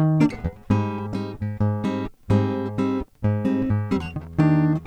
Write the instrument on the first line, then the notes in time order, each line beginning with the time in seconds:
acoustic guitar
0.01 D#3 G4
0.22 A#3 D4 G4
0.72 G#2 G3 D#4
1.16 G3 C4 D#4
1.44 G#2
1.63 G#2
1.86 G3 C4 D#4
2.32 G#2 G3 C4 D#4
2.81 G3 C4 D#4
3.27 G#2
3.47 G3 C4 D#4
3.73 G#2
3.94 G3 C4 D#4
4.18 D#3
4.41 D#3 A#3 D4 G4